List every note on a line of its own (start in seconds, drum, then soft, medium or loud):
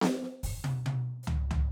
0.01 snare loud
0.04 snare loud
0.23 snare soft
0.43 open hi-hat loud
0.43 kick medium
0.64 high tom loud
0.86 high tom loud
1.23 hi-hat pedal medium
1.27 floor tom loud
1.51 floor tom loud